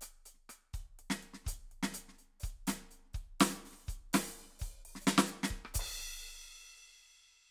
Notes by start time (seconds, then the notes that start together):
0.01 closed hi-hat, cross-stick, hi-hat pedal
0.26 closed hi-hat
0.34 snare
0.49 closed hi-hat, cross-stick, snare
0.74 open hi-hat, kick
0.80 kick
0.99 closed hi-hat
1.10 snare
1.23 closed hi-hat
1.34 snare
1.45 closed hi-hat, kick, snare
1.53 kick
1.71 closed hi-hat
1.83 snare
1.92 closed hi-hat, snare
2.08 snare
2.13 snare
2.19 closed hi-hat, snare
2.40 kick, snare, hi-hat pedal
2.44 closed hi-hat
2.49 kick
2.52 kick
2.67 open hi-hat, snare
2.91 closed hi-hat, snare
2.96 snare
2.97 snare
3.04 snare
3.14 kick, closed hi-hat, hi-hat pedal
3.40 open hi-hat, snare
3.50 snare
3.65 open hi-hat, snare
3.72 snare
3.77 snare
3.80 snare
3.83 snare, hi-hat pedal
3.88 closed hi-hat, kick, snare
3.94 kick
4.13 open hi-hat, snare
4.27 snare
4.38 open hi-hat
4.42 snare
4.46 snare
4.50 snare
4.57 snare, hi-hat pedal
4.62 open hi-hat, kick
4.85 open hi-hat
4.95 snare
5.01 hi-hat pedal
5.07 snare
5.18 snare
5.26 hi-hat pedal
5.43 snare, hi-hat pedal
5.50 kick
5.65 cross-stick
5.74 kick, cross-stick, hi-hat pedal
5.79 kick, crash
5.91 hi-hat pedal
5.99 cross-stick